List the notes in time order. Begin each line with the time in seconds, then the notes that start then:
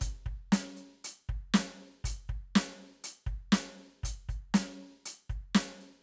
0.01 closed hi-hat, kick
0.26 kick, closed hi-hat
0.52 closed hi-hat, snare
0.76 closed hi-hat
0.93 snare
1.04 closed hi-hat
1.27 kick, closed hi-hat
1.54 closed hi-hat, snare
1.59 snare
1.79 closed hi-hat
2.04 closed hi-hat, kick
2.09 snare
2.28 kick, closed hi-hat
2.56 closed hi-hat, snare
3.04 closed hi-hat
3.26 kick, closed hi-hat
3.52 closed hi-hat, snare
3.79 closed hi-hat
4.03 closed hi-hat, kick
4.29 closed hi-hat, kick
4.54 closed hi-hat, snare
4.60 snare
4.78 closed hi-hat
5.06 closed hi-hat
5.30 kick, closed hi-hat
5.55 closed hi-hat, snare
5.62 snare
5.81 closed hi-hat